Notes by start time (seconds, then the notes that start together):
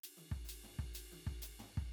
0.03 ride
0.17 high tom
0.31 kick
0.45 hi-hat pedal, ride
0.64 floor tom
0.79 kick
0.94 hi-hat pedal, ride
1.12 high tom
1.27 kick
1.42 hi-hat pedal, ride
1.59 floor tom
1.77 kick